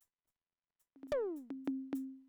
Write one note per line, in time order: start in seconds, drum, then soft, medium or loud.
0.01 hi-hat pedal soft
0.27 hi-hat pedal soft
0.80 hi-hat pedal soft
0.96 high tom soft
1.03 high tom soft
1.07 hi-hat pedal soft
1.07 high tom soft
1.12 high tom loud
1.36 hi-hat pedal soft
1.50 high tom medium
1.65 hi-hat pedal soft
1.65 high tom loud
1.93 hi-hat pedal medium
1.93 high tom loud